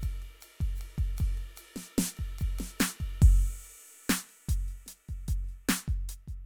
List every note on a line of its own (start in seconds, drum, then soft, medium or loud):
0.01 kick medium
0.01 hi-hat pedal medium
0.01 ride loud
0.22 ride medium
0.41 hi-hat pedal medium
0.41 ride loud
0.61 kick medium
0.61 ride medium
0.76 hi-hat pedal medium
0.81 ride loud
0.98 kick medium
0.98 ride medium
1.17 kick medium
1.17 hi-hat pedal medium
1.17 ride loud
1.38 ride medium
1.56 hi-hat pedal medium
1.56 ride loud
1.76 snare medium
1.76 ride bell medium
1.98 snare loud
1.98 hi-hat pedal medium
1.98 ride loud
2.17 kick soft
2.17 ride medium
2.39 kick medium
2.39 hi-hat pedal medium
2.39 ride loud
2.59 snare medium
2.59 ride loud
2.79 snare loud
2.79 hi-hat pedal medium
2.79 ride loud
3.00 kick soft
3.00 ride medium
3.22 kick loud
3.22 crash loud
3.62 hi-hat pedal soft
4.10 closed hi-hat medium
4.10 snare loud
4.29 closed hi-hat soft
4.49 closed hi-hat loud
4.49 kick medium
4.68 closed hi-hat soft
4.86 closed hi-hat loud
4.86 snare soft
5.09 kick soft
5.09 closed hi-hat soft
5.28 closed hi-hat medium
5.28 kick medium
5.44 snare soft
5.49 closed hi-hat soft
5.69 closed hi-hat loud
5.69 snare loud
5.88 kick medium
5.88 closed hi-hat soft
6.09 closed hi-hat loud
6.28 kick soft
6.28 closed hi-hat soft